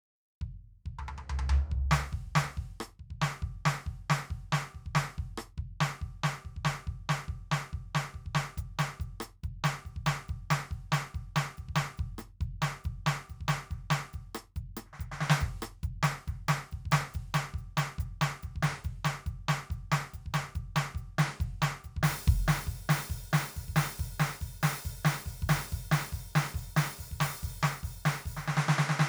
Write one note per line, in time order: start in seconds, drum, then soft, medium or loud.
0.41 kick soft
0.86 kick soft
0.99 floor tom medium
1.08 floor tom medium
1.18 floor tom medium
1.29 floor tom loud
1.39 floor tom loud
1.49 floor tom loud
1.71 kick medium
1.91 snare loud
2.12 kick medium
2.12 snare soft
2.35 snare loud
2.57 kick soft
2.57 snare soft
2.80 cross-stick medium
2.99 kick soft
3.10 kick soft
3.22 snare loud
3.42 kick medium
3.65 snare loud
3.86 kick soft
3.86 snare soft
4.10 snare loud
4.30 kick soft
4.52 snare loud
4.74 kick soft
4.86 kick soft
4.95 snare loud
5.18 kick soft
5.37 cross-stick medium
5.58 kick soft
5.80 snare loud
6.01 kick soft
6.23 snare loud
6.41 kick soft
6.41 snare soft
6.56 kick soft
6.65 snare loud
6.87 kick soft
7.09 snare loud
7.28 kick soft
7.51 snare loud
7.73 kick soft
7.95 snare medium
8.14 kick soft
8.26 kick soft
8.35 snare loud
8.57 closed hi-hat medium
8.57 kick soft
8.79 closed hi-hat medium
8.79 snare medium
9.00 kick soft
9.00 closed hi-hat medium
9.20 closed hi-hat medium
9.20 cross-stick medium
9.43 kick soft
9.43 closed hi-hat soft
9.64 closed hi-hat medium
9.64 snare loud
9.85 kick soft
9.85 closed hi-hat soft
9.96 kick soft
10.06 closed hi-hat medium
10.06 snare loud
10.28 kick soft
10.28 closed hi-hat soft
10.50 closed hi-hat medium
10.50 snare loud
10.71 kick soft
10.71 closed hi-hat soft
10.92 closed hi-hat medium
10.92 snare loud
11.13 kick soft
11.13 snare soft
11.13 closed hi-hat soft
11.36 closed hi-hat medium
11.36 snare loud
11.57 closed hi-hat soft
11.57 kick soft
11.68 kick soft
11.76 closed hi-hat medium
11.76 snare loud
11.97 closed hi-hat soft
11.97 kick medium
12.18 closed hi-hat medium
12.18 cross-stick medium
12.41 kick medium
12.41 closed hi-hat soft
12.62 closed hi-hat medium
12.62 snare medium
12.74 snare soft
12.84 closed hi-hat soft
12.84 kick medium
13.06 closed hi-hat medium
13.06 snare loud
13.29 kick soft
13.29 closed hi-hat soft
13.40 kick soft
13.48 closed hi-hat medium
13.48 snare loud
13.71 kick soft
13.71 snare soft
13.71 closed hi-hat soft
13.90 closed hi-hat medium
13.90 snare loud
14.11 kick soft
14.11 snare soft
14.11 closed hi-hat soft
14.35 closed hi-hat medium
14.35 cross-stick medium
14.56 kick soft
14.56 closed hi-hat soft
14.77 closed hi-hat loud
14.77 cross-stick medium
14.86 snare soft
14.93 snare soft
14.99 closed hi-hat medium
14.99 kick soft
15.12 snare medium
15.20 snare medium
15.30 snare loud
15.40 closed hi-hat medium
15.40 kick medium
15.40 snare soft
15.62 closed hi-hat loud
15.62 cross-stick medium
15.83 closed hi-hat medium
15.83 kick medium
16.03 closed hi-hat loud
16.03 snare loud
16.27 kick soft
16.27 snare soft
16.27 closed hi-hat soft
16.48 closed hi-hat loud
16.48 snare loud
16.71 kick soft
16.71 closed hi-hat soft
16.85 kick soft
16.91 closed hi-hat loud
16.91 snare loud
17.11 closed hi-hat medium
17.11 kick soft
17.11 snare soft
17.34 closed hi-hat loud
17.34 snare loud
17.54 kick soft
17.54 snare soft
17.58 closed hi-hat soft
17.77 closed hi-hat loud
17.77 snare loud
17.98 closed hi-hat medium
17.98 kick medium
17.98 snare soft
18.21 closed hi-hat medium
18.21 snare loud
18.42 kick soft
18.42 snare soft
18.42 closed hi-hat medium
18.56 kick soft
18.62 closed hi-hat medium
18.62 snare loud
18.82 kick soft
18.82 snare soft
18.82 closed hi-hat medium
19.04 closed hi-hat medium
19.04 snare medium
19.26 kick soft
19.26 snare soft
19.26 closed hi-hat medium
19.48 closed hi-hat medium
19.48 snare loud
19.69 kick soft
19.69 snare soft
19.69 closed hi-hat soft
19.92 closed hi-hat medium
19.92 snare loud
20.13 closed hi-hat medium
20.13 kick soft
20.26 kick soft
20.34 closed hi-hat medium
20.34 snare medium
20.55 kick soft
20.55 closed hi-hat medium
20.76 closed hi-hat loud
20.76 snare loud
20.95 kick soft
20.95 closed hi-hat soft
21.18 closed hi-hat loud
21.18 snare loud
21.40 closed hi-hat medium
21.40 kick medium
21.40 snare soft
21.62 closed hi-hat loud
21.62 snare loud
21.84 kick soft
21.84 closed hi-hat medium
21.96 kick soft
22.03 open hi-hat loud
22.03 snare loud
22.27 open hi-hat medium
22.27 kick loud
22.48 open hi-hat loud
22.48 snare loud
22.67 kick medium
22.67 open hi-hat soft
22.89 open hi-hat loud
22.89 snare loud
23.10 open hi-hat medium
23.10 kick soft
23.33 open hi-hat loud
23.33 snare loud
23.54 open hi-hat medium
23.54 kick soft
23.54 snare soft
23.68 kick soft
23.76 open hi-hat loud
23.76 snare loud
23.98 open hi-hat medium
23.98 kick medium
24.19 open hi-hat medium
24.19 snare loud
24.41 open hi-hat medium
24.41 kick soft
24.63 open hi-hat loud
24.63 snare loud
24.85 open hi-hat medium
24.85 kick soft
25.05 open hi-hat loud
25.05 snare loud
25.19 snare soft
25.26 open hi-hat medium
25.26 kick soft
25.42 kick medium
25.49 open hi-hat loud
25.49 snare loud
25.63 snare soft
25.72 open hi-hat medium
25.72 kick medium
25.91 open hi-hat loud
25.91 snare loud
26.12 open hi-hat medium
26.12 kick soft
26.12 snare soft
26.35 open hi-hat medium
26.35 snare loud
26.54 open hi-hat medium
26.54 kick soft
26.54 snare soft
26.76 open hi-hat loud
26.76 snare loud
26.99 open hi-hat medium
26.99 kick soft
27.11 kick soft
27.20 open hi-hat loud
27.20 snare loud
27.43 open hi-hat medium
27.43 kick soft
27.63 open hi-hat medium
27.63 snare loud
27.83 open hi-hat medium
27.83 kick soft
27.83 snare soft
28.05 open hi-hat medium
28.05 snare loud
28.25 open hi-hat medium
28.25 kick soft
28.37 snare medium
28.48 snare loud
28.57 snare loud
28.68 snare loud
28.78 snare loud
28.89 snare loud